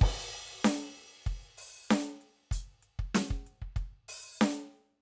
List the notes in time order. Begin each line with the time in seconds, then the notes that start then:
0.01 kick, crash
0.64 closed hi-hat, snare
0.98 closed hi-hat
1.26 kick, closed hi-hat
1.58 open hi-hat
1.89 snare, closed hi-hat, hi-hat pedal
2.21 closed hi-hat
2.51 closed hi-hat, kick
2.83 closed hi-hat
2.99 kick
3.15 closed hi-hat, snare
3.30 kick
3.47 closed hi-hat
3.62 kick
3.76 kick, closed hi-hat
4.08 open hi-hat
4.41 open hi-hat, snare, hi-hat pedal
4.73 closed hi-hat